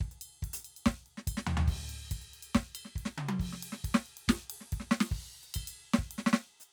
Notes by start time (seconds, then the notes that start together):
0.01 kick, ride
0.12 closed hi-hat
0.22 ride bell
0.36 closed hi-hat
0.43 kick, ride
0.54 closed hi-hat
0.65 ride bell
0.77 ride bell
0.86 kick, snare
1.07 snare, ride
1.18 snare
1.27 kick, ride bell
1.38 snare
1.47 floor tom
1.57 floor tom
1.68 kick, crash
1.80 closed hi-hat
1.90 ride
2.00 closed hi-hat
2.11 kick, ride bell
2.22 closed hi-hat
2.34 ride
2.43 ride bell
2.55 kick, snare
2.75 ride bell
2.85 snare
2.96 kick, ride
3.06 snare
3.18 mid tom
3.29 high tom
3.40 kick, crash
3.53 snare
3.63 ride
3.73 snare
3.85 kick, ride
3.95 snare
4.06 ride
4.18 ride
4.29 kick, snare
4.50 ride
4.61 snare
4.73 kick, ride
4.80 snare
4.92 snare
5.01 snare
5.12 kick, crash
5.25 closed hi-hat
5.43 closed hi-hat
5.55 kick, ride bell
5.68 ride bell
5.94 snare
5.99 kick
6.11 ride
6.18 snare
6.27 snare
6.33 snare
6.60 hi-hat pedal